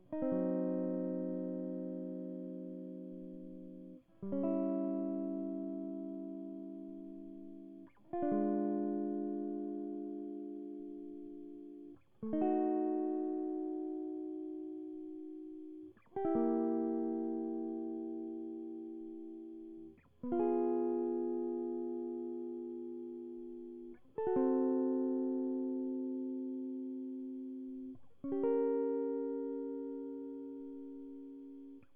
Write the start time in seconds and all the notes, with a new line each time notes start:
0.13 D#4
0.23 C4
0.33 F#3
4.24 G3
4.33 C#4
4.44 E4
8.14 F4
8.23 D4
8.32 G#3
12.24 A3
12.34 D#4
12.42 F#4
16.17 G4
16.25 E4
16.36 A#3
20.24 B3
20.32 F4
20.40 G#4
24.19 A4
24.27 F#4
24.37 C4
28.25 C#4
28.32 G4
28.44 A#4